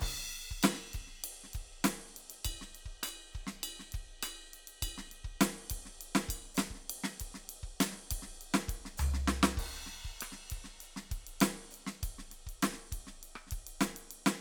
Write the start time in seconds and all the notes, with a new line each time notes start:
0.01 kick, crash
0.09 kick
0.13 kick
0.51 kick
0.63 snare, hi-hat pedal, ride bell
0.74 snare
0.93 kick, ride
1.01 kick
1.07 snare
1.24 hi-hat pedal, ride
1.43 snare
1.53 kick, ride
1.61 kick
1.84 snare, hi-hat pedal, ride
2.08 snare
2.16 ride
2.23 snare
2.30 ride
2.44 kick, hi-hat pedal, ride bell
2.52 kick
2.54 kick
2.61 snare
2.75 ride
2.85 kick
3.03 cross-stick, hi-hat pedal, ride bell
3.33 kick, ride
3.47 snare
3.63 ride bell
3.79 snare
3.92 kick, ride
4.01 kick
4.22 cross-stick, hi-hat pedal, ride bell
4.53 ride
4.67 ride
4.82 kick, ride bell
4.89 kick
4.98 snare
5.06 snare
5.11 ride
5.24 kick
5.30 kick
5.41 snare, hi-hat pedal, ride
5.70 kick, ride
5.77 kick
5.85 snare
6.01 ride
6.15 snare
6.25 kick, snare
6.30 ride bell
6.35 kick
6.54 snare, hi-hat pedal, ride
6.70 kick
6.74 snare
6.90 ride
7.04 snare
7.20 kick, hi-hat pedal, ride
7.34 snare
7.49 ride
7.63 kick
7.80 snare, hi-hat pedal, ride
7.91 snare
8.11 kick, ride
8.19 kick, snare
8.40 hi-hat pedal, ride
8.54 snare
8.68 kick, ride
8.76 kick
8.79 kick
8.85 snare
8.97 floor tom, hi-hat pedal
9.13 snare
9.27 snare
9.43 snare
9.57 kick, crash
9.67 kick
9.77 cross-stick
9.86 snare
10.04 kick
10.10 kick
10.20 kick, cross-stick, hi-hat pedal, ride
10.32 snare
10.50 kick, ride
10.58 kick
10.64 snare
10.80 hi-hat pedal, ride
10.96 snare
11.09 kick, snare, ride
11.18 kick
11.27 ride
11.40 snare, hi-hat pedal, ride
11.71 hi-hat pedal, ride
11.86 snare
12.03 kick, hi-hat pedal, ride
12.10 kick
12.18 snare
12.30 snare, ride
12.46 kick, ride
12.62 snare, hi-hat pedal, ride
12.73 snare
12.92 kick, ride
12.98 kick
13.07 snare
13.23 hi-hat pedal, ride
13.35 cross-stick
13.46 snare
13.51 kick, ride
13.59 kick
13.67 ride
13.81 snare, hi-hat pedal
13.94 snare, ride
14.11 ride
14.26 snare